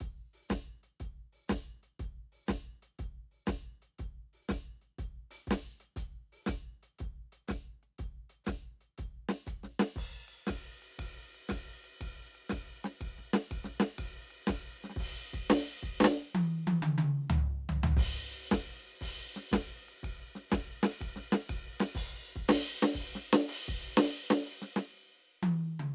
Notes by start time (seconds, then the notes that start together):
0.01 closed hi-hat, kick
0.34 open hi-hat
0.50 closed hi-hat, kick, snare, hi-hat pedal
0.84 closed hi-hat
1.01 closed hi-hat, kick
1.33 open hi-hat
1.49 closed hi-hat, kick, snare, hi-hat pedal
1.84 closed hi-hat
2.00 closed hi-hat, kick
2.33 open hi-hat
2.47 closed hi-hat, kick, snare, hi-hat pedal
2.83 closed hi-hat
2.99 closed hi-hat, kick
3.32 open hi-hat
3.47 closed hi-hat, kick, snare, hi-hat pedal
3.83 closed hi-hat
3.99 closed hi-hat, kick
4.34 open hi-hat
4.49 open hi-hat, kick, snare, hi-hat pedal
4.82 closed hi-hat
4.99 closed hi-hat, kick
5.31 open hi-hat
5.48 closed hi-hat, kick, snare, hi-hat pedal
5.81 closed hi-hat
5.97 closed hi-hat, kick
6.33 open hi-hat
6.47 open hi-hat, kick, snare, hi-hat pedal
6.83 closed hi-hat
6.99 closed hi-hat, kick
7.33 open hi-hat
7.48 open hi-hat, kick, snare, hi-hat pedal
7.84 closed hi-hat
7.99 closed hi-hat, kick
8.30 closed hi-hat
8.45 closed hi-hat, kick, snare, hi-hat pedal
8.81 closed hi-hat
8.98 closed hi-hat, kick
9.29 snare
9.47 kick, closed hi-hat, hi-hat pedal
9.64 snare
9.80 snare
9.97 kick, crash
10.29 ride
10.46 kick, snare, hi-hat pedal, ride
10.83 ride
10.99 kick, ride
11.35 ride
11.49 kick, snare, hi-hat pedal, ride
11.85 ride
12.01 kick, ride
12.36 ride
12.50 kick, snare, hi-hat pedal, ride
12.85 snare
13.01 kick, ride
13.19 snare
13.34 snare
13.52 kick, ride
13.65 snare
13.81 snare
13.99 kick, ride
14.31 ride
14.46 kick, snare, hi-hat pedal, ride
14.85 snare
14.90 snare
14.97 kick, snare, ride
15.34 kick
15.51 snare, ride
15.83 kick
16.01 snare
16.05 snare
16.36 high tom
16.68 high tom
16.83 mid tom
16.99 mid tom
17.31 floor tom
17.70 floor tom
17.84 floor tom
17.98 kick, floor tom, ride
18.51 kick, snare, hi-hat pedal, ride
18.86 ride
19.02 kick, ride
19.37 snare
19.52 kick, snare, hi-hat pedal, ride
19.89 ride
20.04 kick, ride
20.36 snare
20.51 kick, snare, hi-hat pedal, ride
20.84 snare, ride
21.01 kick, ride
21.17 snare
21.33 snare
21.50 kick, hi-hat pedal, ride
21.81 snare, ride
21.96 kick, crash
22.36 kick
22.45 hi-hat pedal, ride
22.50 snare
22.83 snare
22.95 kick
23.00 ride
23.16 snare
23.34 snare
23.49 ride
23.69 kick
23.80 ride
23.98 snare, ride
24.31 snare
24.46 ride
24.62 snare
24.77 snare
25.43 high tom
25.80 mid tom